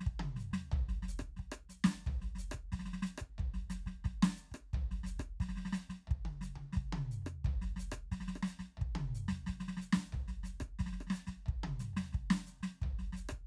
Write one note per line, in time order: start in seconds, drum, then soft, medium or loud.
0.01 snare soft
0.07 kick soft
0.20 high tom loud
0.37 snare soft
0.37 hi-hat pedal soft
0.52 kick soft
0.52 snare medium
0.72 kick soft
0.72 floor tom loud
0.89 snare soft
1.03 snare soft
1.09 hi-hat pedal medium
1.20 kick soft
1.20 cross-stick medium
1.37 kick soft
1.37 snare soft
1.52 cross-stick medium
1.70 snare soft
1.70 hi-hat pedal medium
1.85 kick soft
1.85 snare loud
1.90 snare soft
2.07 kick soft
2.07 floor tom medium
2.22 snare soft
2.36 snare soft
2.36 hi-hat pedal medium
2.52 kick soft
2.52 cross-stick medium
2.72 kick soft
2.72 snare soft
2.80 snare soft
2.86 snare soft
2.94 snare soft
3.03 snare medium
3.03 hi-hat pedal soft
3.18 kick soft
3.18 cross-stick medium
3.39 kick soft
3.39 floor tom medium
3.54 snare soft
3.70 snare soft
3.70 hi-hat pedal medium
3.87 kick soft
3.87 snare soft
4.05 kick soft
4.05 snare soft
4.23 snare loud
4.37 snare soft
4.37 hi-hat pedal soft
4.52 kick soft
4.52 cross-stick medium
4.74 kick soft
4.74 floor tom medium
4.91 snare soft
5.04 snare soft
5.04 hi-hat pedal medium
5.20 kick soft
5.20 cross-stick medium
5.41 kick soft
5.41 snare soft
5.49 snare soft
5.56 snare soft
5.58 snare soft
5.66 snare soft
5.73 snare medium
5.73 hi-hat pedal soft
5.89 kick soft
5.89 snare soft
6.08 kick soft
6.08 floor tom medium
6.26 high tom medium
6.42 snare soft
6.42 hi-hat pedal soft
6.56 kick soft
6.56 high tom medium
6.73 kick soft
6.73 snare soft
6.93 high tom loud
7.12 hi-hat pedal soft
7.22 kick soft
7.27 cross-stick medium
7.45 kick soft
7.45 floor tom medium
7.62 snare soft
7.77 snare soft
7.77 hi-hat pedal medium
7.92 kick soft
7.92 cross-stick medium
8.12 kick soft
8.12 snare soft
8.21 snare soft
8.28 snare medium
8.36 cross-stick medium
8.43 snare medium
8.47 hi-hat pedal soft
8.60 kick soft
8.60 snare soft
8.78 floor tom medium
8.82 kick soft
8.96 high tom loud
9.15 hi-hat pedal medium
9.29 kick soft
9.29 snare medium
9.47 kick soft
9.47 snare medium
9.61 snare soft
9.69 snare medium
9.77 snare soft
9.82 hi-hat pedal medium
9.93 kick soft
9.93 snare medium
10.13 kick soft
10.13 floor tom medium
10.28 snare soft
10.44 snare soft
10.44 hi-hat pedal medium
10.61 kick soft
10.61 cross-stick medium
10.79 kick soft
10.79 snare medium
10.87 snare soft
10.93 snare soft
11.01 cross-stick soft
11.07 snare soft
11.11 snare medium
11.15 hi-hat pedal soft
11.27 kick soft
11.27 snare medium
11.46 kick soft
11.46 floor tom medium
11.64 high tom loud
11.80 snare soft
11.80 hi-hat pedal medium
11.94 kick soft
11.94 snare medium
12.13 kick soft
12.13 snare soft
12.31 snare medium
12.47 snare soft
12.47 hi-hat pedal soft
12.61 kick soft
12.61 snare medium
12.82 kick soft
12.82 floor tom medium
12.99 snare soft
13.13 snare soft
13.17 hi-hat pedal medium
13.29 kick soft
13.29 cross-stick medium